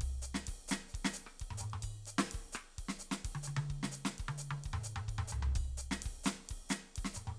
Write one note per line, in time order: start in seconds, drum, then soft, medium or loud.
0.01 kick soft
0.01 ride medium
0.22 hi-hat pedal medium
0.22 ride soft
0.35 snare medium
0.42 hi-hat pedal soft
0.47 kick soft
0.47 ride medium
0.68 snare medium
0.68 hi-hat pedal loud
0.88 hi-hat pedal soft
0.94 kick soft
0.94 ride medium
1.05 snare medium
1.13 hi-hat pedal loud
1.17 ride medium
1.27 cross-stick soft
1.40 kick soft
1.40 ride medium
1.48 kick soft
1.48 mid tom medium
1.58 hi-hat pedal loud
1.58 mid tom medium
1.70 mid tom medium
1.70 ride soft
1.82 kick soft
1.82 ride bell medium
2.06 hi-hat pedal medium
2.06 ride soft
2.18 snare medium
2.31 kick soft
2.31 ride medium
2.53 cross-stick medium
2.53 hi-hat pedal medium
2.73 hi-hat pedal soft
2.78 kick soft
2.78 ride medium
2.89 snare medium
2.99 hi-hat pedal medium
2.99 ride soft
3.11 snare medium
3.25 kick soft
3.25 ride medium
3.32 kick soft
3.32 high tom medium
3.43 hi-hat pedal loud
3.48 high tom medium
3.57 high tom loud
3.70 kick soft
3.70 ride soft
3.83 snare medium
3.92 hi-hat pedal medium
3.92 ride medium
4.05 snare medium
4.18 kick soft
4.18 ride medium
4.27 kick soft
4.27 high tom medium
4.38 hi-hat pedal medium
4.42 ride soft
4.51 high tom medium
4.59 hi-hat pedal soft
4.64 kick soft
4.64 ride medium
4.73 mid tom medium
4.84 hi-hat pedal medium
4.84 ride soft
4.96 mid tom medium
5.08 kick soft
5.08 ride soft
5.18 mid tom medium
5.28 hi-hat pedal loud
5.32 floor tom medium
5.43 floor tom loud
5.52 kick medium
5.52 floor tom soft
5.52 ride bell medium
5.64 kick soft
5.77 hi-hat pedal loud
5.77 ride soft
5.91 snare medium
5.99 hi-hat pedal soft
5.99 ride medium
6.06 kick soft
6.24 snare loud
6.24 hi-hat pedal medium
6.44 hi-hat pedal soft
6.49 kick soft
6.49 ride medium
6.69 snare medium
6.69 hi-hat pedal loud
6.96 kick soft
6.96 ride medium
7.05 snare medium
7.14 hi-hat pedal medium
7.14 mid tom medium
7.27 mid tom medium